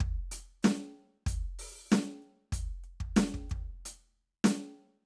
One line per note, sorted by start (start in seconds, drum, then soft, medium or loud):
0.01 kick loud
0.32 open hi-hat loud
0.63 snare loud
0.63 closed hi-hat soft
0.63 hi-hat pedal medium
1.27 closed hi-hat loud
1.27 kick medium
1.60 open hi-hat loud
1.91 closed hi-hat medium
1.91 snare loud
1.91 hi-hat pedal medium
2.23 closed hi-hat soft
2.53 closed hi-hat loud
2.53 kick medium
2.84 closed hi-hat soft
3.01 kick medium
3.17 closed hi-hat loud
3.17 snare loud
3.35 kick medium
3.50 kick medium
3.50 closed hi-hat soft
3.86 closed hi-hat loud
4.45 closed hi-hat loud
4.45 snare loud